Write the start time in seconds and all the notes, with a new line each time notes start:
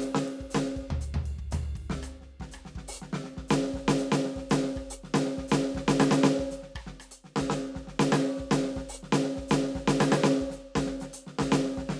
0.01 hi-hat pedal, ride
0.15 snare
0.28 ride
0.41 kick
0.49 kick, hi-hat pedal
0.55 snare, ride bell
0.77 kick, ride bell
0.83 kick
0.91 floor tom
1.01 hi-hat pedal, ride bell
1.15 floor tom
1.22 hi-hat pedal, ride bell
1.39 kick
1.52 floor tom, hi-hat pedal, ride bell
1.64 floor tom
1.76 kick, ride
1.82 kick
1.90 snare
2.03 cross-stick, hi-hat pedal
2.21 snare
2.40 kick, snare
2.46 kick
2.52 cross-stick, hi-hat pedal
2.66 snare
2.76 kick, snare
2.81 kick
2.88 open hi-hat
2.97 hi-hat pedal
3.02 snare
3.13 snare
3.24 snare
3.37 kick, snare
3.45 kick, hi-hat pedal
3.51 snare
3.63 snare
3.74 kick, snare
3.80 kick
3.89 snare
3.98 snare, hi-hat pedal
4.12 snare
4.25 snare
4.36 kick, snare
4.50 snare, hi-hat pedal
4.64 snare
4.77 kick, cross-stick
4.83 kick
4.91 open hi-hat, hi-hat pedal
5.04 snare
5.14 snare
5.26 snare
5.38 kick, snare
5.49 snare, hi-hat pedal
5.63 snare
5.75 kick, snare
5.81 kick
5.89 snare
6.00 snare, hi-hat pedal
6.12 snare
6.24 snare
6.38 kick, snare
6.51 snare, hi-hat pedal
6.63 snare
6.76 kick, cross-stick
6.81 kick
6.87 snare
7.00 cross-stick, hi-hat pedal
7.12 closed hi-hat
7.25 snare
7.37 snare
7.41 kick
7.50 snare, hi-hat pedal
7.64 snare
7.76 kick, snare
7.88 snare
8.00 snare, hi-hat pedal
8.13 snare
8.20 snare
8.25 snare
8.37 kick, snare
8.52 snare, hi-hat pedal
8.63 snare
8.77 kick, snare
8.82 kick
8.89 open hi-hat
8.96 hi-hat pedal
9.03 snare
9.13 snare
9.24 snare
9.36 kick, snare
9.47 kick, hi-hat pedal
9.52 snare
9.63 snare
9.76 kick, snare
9.81 kick
9.88 snare
10.00 snare, hi-hat pedal
10.12 snare
10.24 snare
10.38 kick, snare
10.51 snare, hi-hat pedal
10.65 snare
10.76 kick, snare
10.87 snare
11.01 snare, hi-hat pedal
11.14 closed hi-hat
11.27 snare
11.39 kick, snare
11.52 snare, hi-hat pedal
11.64 snare
11.78 kick, snare
11.89 snare